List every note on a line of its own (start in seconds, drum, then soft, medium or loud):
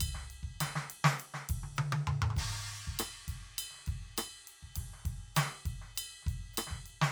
0.01 kick soft
0.01 hi-hat pedal medium
0.01 ride bell loud
0.08 kick soft
0.15 snare soft
0.30 ride soft
0.43 kick soft
0.61 snare medium
0.61 hi-hat pedal medium
0.61 ride bell loud
0.76 snare medium
0.90 ride medium
1.05 snare loud
1.19 hi-hat pedal medium
1.19 ride medium
1.34 snare medium
1.49 kick medium
1.49 ride medium
1.57 kick soft
1.64 high tom medium
1.76 hi-hat pedal medium
1.76 high tom loud
1.93 high tom loud
2.08 mid tom medium
2.22 mid tom loud
2.31 mid tom soft
2.37 kick medium
2.37 hi-hat pedal medium
2.37 crash loud
2.50 kick soft
2.88 kick soft
2.93 kick soft
2.99 cross-stick medium
2.99 hi-hat pedal medium
2.99 ride bell loud
3.28 kick soft
3.28 ride medium
3.35 kick soft
3.47 snare soft
3.59 hi-hat pedal medium
3.59 ride bell loud
3.71 snare soft
3.75 snare soft
3.79 snare soft
3.87 kick soft
3.87 ride soft
3.94 kick soft
4.17 cross-stick medium
4.17 hi-hat pedal medium
4.17 ride bell loud
4.48 ride medium
4.63 kick soft
4.75 kick soft
4.75 snare soft
4.75 hi-hat pedal medium
4.75 ride medium
4.85 kick soft
4.94 snare soft
4.98 snare soft
5.01 snare soft
5.04 kick soft
5.04 snare soft
5.04 ride medium
5.17 kick soft
5.35 snare loud
5.35 hi-hat pedal medium
5.35 ride bell loud
5.47 snare soft
5.66 kick soft
5.66 ride medium
5.72 kick soft
5.82 snare soft
5.96 hi-hat pedal medium
5.96 ride bell loud
6.23 snare soft
6.27 kick medium
6.27 ride soft
6.34 kick soft
6.37 kick soft
6.54 hi-hat pedal medium
6.58 cross-stick medium
6.58 ride bell loud
6.67 snare soft
6.71 kick soft
6.76 kick soft
6.85 hi-hat pedal soft
6.85 ride soft
7.02 snare loud
7.09 snare soft